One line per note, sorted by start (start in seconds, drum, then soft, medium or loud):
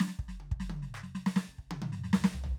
0.01 snare loud
0.08 snare medium
0.19 kick medium
0.29 snare medium
0.40 high tom medium
0.52 kick medium
0.60 snare medium
0.70 closed hi-hat soft
0.70 high tom loud
0.83 kick soft
0.83 snare soft
0.94 percussion medium
1.03 snare soft
1.15 snare medium
1.27 snare loud
1.36 snare loud
1.49 kick soft
1.59 kick soft
1.71 high tom loud
1.82 high tom loud
1.93 snare medium
2.04 snare medium
2.13 snare loud
2.24 snare loud
2.34 floor tom medium
2.44 floor tom loud